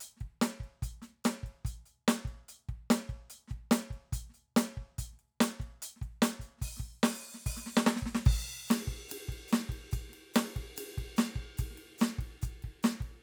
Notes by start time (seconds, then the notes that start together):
0.01 closed hi-hat
0.17 snare, closed hi-hat
0.21 kick
0.42 closed hi-hat, snare
0.61 kick, closed hi-hat
0.83 closed hi-hat, kick
1.02 closed hi-hat, snare
1.25 closed hi-hat, snare
1.44 kick, closed hi-hat
1.65 closed hi-hat, kick
1.86 closed hi-hat
2.08 closed hi-hat, snare
2.26 kick, closed hi-hat
2.49 closed hi-hat
2.69 kick, closed hi-hat
2.91 closed hi-hat, snare
3.10 kick, closed hi-hat
3.30 closed hi-hat
3.48 kick, snare, closed hi-hat
3.72 closed hi-hat, snare
3.91 kick, closed hi-hat
4.13 closed hi-hat, kick
4.30 snare
4.34 closed hi-hat
4.57 closed hi-hat, snare
4.78 kick
4.99 closed hi-hat, kick
5.11 kick, snare
5.20 closed hi-hat
5.41 closed hi-hat, snare
5.60 kick, snare, closed hi-hat
5.82 closed hi-hat, snare
5.97 snare
6.02 kick, closed hi-hat
6.23 closed hi-hat, snare
6.40 closed hi-hat, kick
6.59 open hi-hat, kick, snare
6.77 kick, snare
6.83 open hi-hat
7.04 open hi-hat, snare
7.24 open hi-hat
7.35 snare
7.46 open hi-hat, kick
7.57 snare
7.67 snare
7.77 snare
7.87 snare
7.97 snare
8.03 kick, snare
8.15 snare
8.26 kick, crash
8.68 snare, hi-hat pedal, ride
8.88 kick, ride
9.09 hi-hat pedal, ride
9.29 kick, ride
9.49 hi-hat pedal
9.53 snare, ride
9.70 kick, ride
9.92 kick, hi-hat pedal, ride bell
10.10 snare
10.14 ride
10.34 snare, hi-hat pedal, ride
10.57 kick, ride
10.77 hi-hat pedal, ride
10.98 kick, ride
11.17 snare, hi-hat pedal, ride bell
11.36 kick
11.58 kick, hi-hat pedal, ride
11.71 snare
11.78 ride
11.99 snare, hi-hat pedal, ride bell
12.19 kick, ride
12.42 kick, hi-hat pedal, ride bell
12.63 kick, ride
12.83 snare, hi-hat pedal, ride bell
13.01 kick, ride